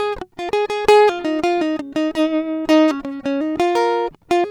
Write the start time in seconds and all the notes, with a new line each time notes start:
0.00 G#4
0.41 F4
0.55 G#4
0.72 G#4
0.90 G#4
1.11 F4
1.26 D#4
1.45 F4
1.63 D#4
1.81 C#4
1.98 D#4
2.17 D#4
2.71 D#4
2.90 C#4
3.06 C#4
3.27 C#4
3.43 D#4
3.61 F4
3.77 A#4
4.33 F4